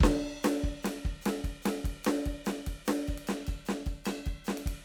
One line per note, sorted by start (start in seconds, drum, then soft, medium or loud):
0.01 kick loud
0.01 snare loud
0.01 crash loud
0.43 snare loud
0.43 hi-hat pedal medium
0.43 ride loud
0.64 kick medium
0.64 ride soft
0.83 snare loud
0.83 hi-hat pedal medium
0.83 ride loud
1.05 kick medium
1.05 ride soft
1.22 hi-hat pedal medium
1.26 snare loud
1.26 ride loud
1.44 kick medium
1.44 ride medium
1.63 snare loud
1.63 hi-hat pedal medium
1.63 ride loud
1.85 kick medium
1.85 ride medium
2.04 snare loud
2.04 hi-hat pedal medium
2.04 ride loud
2.26 kick medium
2.26 ride medium
2.45 snare loud
2.45 hi-hat pedal medium
2.45 ride loud
2.67 kick medium
2.67 ride medium
2.86 snare loud
2.86 hi-hat pedal medium
2.86 ride loud
3.08 kick medium
3.08 ride bell medium
3.18 ride medium
3.27 snare loud
3.27 hi-hat pedal medium
3.27 ride bell medium
3.47 kick medium
3.47 ride bell medium
3.66 snare loud
3.66 hi-hat pedal medium
3.66 ride bell medium
3.87 kick medium
3.87 ride bell medium
4.05 snare loud
4.05 hi-hat pedal medium
4.05 ride bell loud
4.26 kick medium
4.26 ride bell medium
4.45 snare loud
4.45 hi-hat pedal medium
4.45 ride bell medium
4.58 ride medium
4.66 kick medium